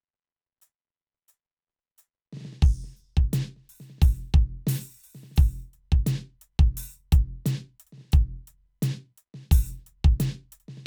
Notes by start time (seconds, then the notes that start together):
0.63 hi-hat pedal
1.30 hi-hat pedal
1.99 hi-hat pedal
2.34 snare
2.38 snare
2.42 snare
2.46 snare
2.54 snare
2.64 kick, crash
2.86 snare
2.98 open hi-hat
3.18 kick
3.35 closed hi-hat, snare
3.58 snare
3.71 open hi-hat
3.82 snare
3.91 snare
4.00 open hi-hat, kick, snare
4.07 snare
4.14 snare
4.20 snare
4.35 kick
4.68 open hi-hat, snare
5.05 open hi-hat
5.16 snare
5.25 snare
5.33 snare
5.38 open hi-hat, kick, snare
5.44 snare
5.49 snare
5.52 snare
5.55 snare
5.75 closed hi-hat
5.93 kick
6.08 closed hi-hat, snare
6.43 closed hi-hat
6.61 kick
6.78 open hi-hat
7.14 closed hi-hat, kick
7.47 closed hi-hat, snare
7.81 closed hi-hat
7.88 closed hi-hat
7.94 snare
7.99 snare
8.02 snare
8.06 snare
8.12 closed hi-hat, kick, snare
8.49 closed hi-hat
8.84 closed hi-hat, snare
9.19 open hi-hat
9.36 snare
9.53 open hi-hat, kick
9.72 snare
9.88 closed hi-hat
10.06 kick
10.21 closed hi-hat, snare
10.54 closed hi-hat
10.61 closed hi-hat
10.70 snare
10.79 snare